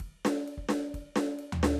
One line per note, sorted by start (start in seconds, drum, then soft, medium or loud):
0.03 kick soft
0.03 ride medium
0.25 snare loud
0.25 ride medium
0.48 ride medium
0.57 kick soft
0.69 snare loud
0.69 ride medium
0.94 kick soft
0.94 ride medium
1.16 snare loud
1.16 ride medium
1.39 ride medium
1.52 floor tom loud
1.63 snare loud